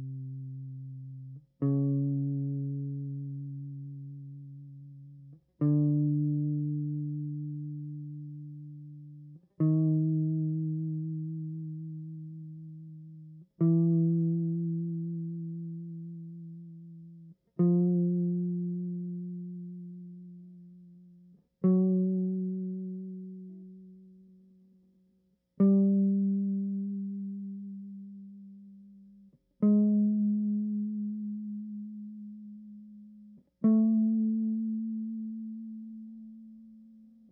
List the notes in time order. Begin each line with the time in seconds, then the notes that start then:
1.65 C#3
5.63 D3
9.61 D#3
13.63 E3
17.62 F3
21.65 F#3
25.63 G3
29.65 G#3
33.66 A3